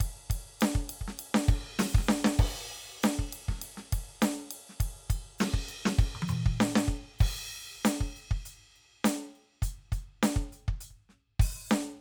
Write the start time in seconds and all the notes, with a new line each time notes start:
0.01 kick, hi-hat pedal, ride
0.31 kick, ride
0.60 snare, hi-hat pedal, ride
0.76 kick
0.89 hi-hat pedal, ride
1.02 kick
1.08 snare
1.18 hi-hat pedal, ride
1.35 snare
1.49 kick, ride
1.79 open hi-hat, snare
1.95 kick, snare
2.06 snare
2.09 snare
2.25 snare
2.40 kick, hi-hat pedal, crash
2.85 kick
3.03 snare, hi-hat pedal, ride
3.20 kick
3.33 hi-hat pedal, ride
3.49 kick, snare
3.55 snare
3.59 snare
3.62 snare, hi-hat pedal, ride
3.78 snare
3.93 kick, ride
4.22 snare, hi-hat pedal, ride
4.51 ride
4.70 snare
4.80 kick, hi-hat pedal, ride
5.11 kick, ride bell
5.39 snare, hi-hat pedal, ride
5.54 kick
5.69 hi-hat pedal, ride
5.86 snare
5.99 kick, ride
6.16 mid tom
6.23 high tom
6.29 hi-hat pedal, mid tom
6.46 kick
6.61 snare, hi-hat pedal
6.76 snare
6.89 kick
7.20 kick, hi-hat pedal, crash
7.77 kick
7.86 closed hi-hat, snare
8.01 kick
8.17 closed hi-hat
8.32 kick
8.46 closed hi-hat
8.77 closed hi-hat
9.05 closed hi-hat, snare
9.36 closed hi-hat
9.63 closed hi-hat, kick
9.93 closed hi-hat, kick
10.23 closed hi-hat, snare
10.37 kick
10.53 closed hi-hat
10.69 kick
10.81 closed hi-hat
10.91 kick
11.10 snare
11.40 open hi-hat, kick
11.70 snare, hi-hat pedal